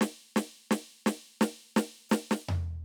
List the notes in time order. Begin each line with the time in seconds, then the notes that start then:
0.01 snare
0.36 snare
0.71 snare
1.06 snare
1.41 snare
1.76 snare
2.09 snare, hi-hat pedal
2.31 snare
2.49 floor tom